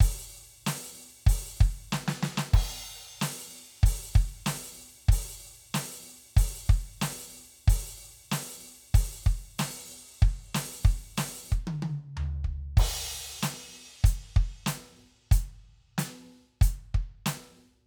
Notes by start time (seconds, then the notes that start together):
0.01 open hi-hat, kick
0.67 open hi-hat, snare
1.27 open hi-hat, kick
1.61 kick
1.91 snare, hi-hat pedal
2.08 snare
2.23 snare
2.38 snare
2.54 kick, crash
3.22 open hi-hat, snare
3.84 open hi-hat, kick
4.16 kick
4.47 open hi-hat, snare
4.54 snare
5.09 open hi-hat, kick
5.75 open hi-hat, snare
5.83 snare
6.37 open hi-hat, kick
6.70 kick
7.02 open hi-hat, snare
7.68 open hi-hat, kick
8.32 open hi-hat, snare
8.95 open hi-hat, kick
9.27 kick
9.59 open hi-hat, snare
10.23 kick
10.55 open hi-hat, snare
10.85 kick
11.18 open hi-hat, snare
11.51 kick, hi-hat pedal
11.68 high tom
11.83 high tom
12.17 floor tom
12.45 kick
12.78 kick, crash
13.43 open hi-hat, snare
14.05 closed hi-hat, kick
14.37 kick
14.67 closed hi-hat, snare
15.32 closed hi-hat, kick
15.99 closed hi-hat, snare
16.62 closed hi-hat, kick
16.95 kick
17.26 closed hi-hat, snare